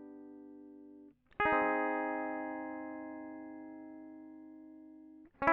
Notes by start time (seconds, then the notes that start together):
1.40 G#4
1.45 D#4
1.52 C4
1.63 F#3
5.42 C#4